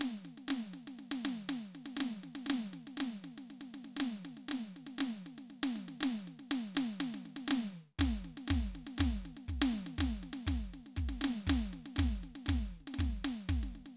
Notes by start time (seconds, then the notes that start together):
0.01 snare
0.25 snare
0.38 snare
0.48 snare
0.50 snare
0.74 snare
0.87 snare
0.99 snare
1.11 snare
1.25 snare
1.49 snare
1.75 snare
1.86 snare
1.97 snare
2.00 snare
2.23 snare
2.35 snare
2.46 snare
2.50 snare
2.73 snare
2.87 snare
2.97 snare
3.00 snare
3.24 snare
3.38 snare
3.50 snare
3.61 snare
3.74 snare
3.84 snare
3.97 snare
4.00 snare
4.25 snare
4.37 snare
4.49 snare
4.51 snare
4.76 snare
4.87 snare
4.98 snare
5.01 snare
5.26 snare
5.38 snare
5.50 snare
5.63 snare
5.76 snare
5.88 snare
6.01 snare
6.03 snare
6.27 snare
6.39 snare
6.51 snare
6.75 snare
6.77 snare
7.00 snare
7.14 snare
7.25 snare
7.36 snare
7.48 snare
7.51 snare
7.99 kick, snare
8.01 snare
8.24 snare
8.37 snare
8.48 kick, snare
8.50 snare
8.75 snare
8.87 snare
8.98 kick, snare
9.01 snare
9.25 snare
9.37 snare
9.48 kick, snare
9.62 snare
9.73 snare
9.86 snare
9.98 kick, snare
10.01 snare
10.23 snare
10.47 kick, snare
10.74 snare
10.86 snare
10.97 kick, snare
11.09 snare
11.21 snare
11.24 snare
11.47 kick, snare
11.49 snare
11.73 snare
11.86 snare
11.96 kick, snare
11.99 snare
12.23 snare
12.35 snare
12.46 kick, snare
12.49 snare
12.77 snare
12.80 snare
12.87 snare
12.94 snare
12.99 kick, snare
13.24 snare
13.49 kick, snare
13.63 snare
13.75 snare
13.86 snare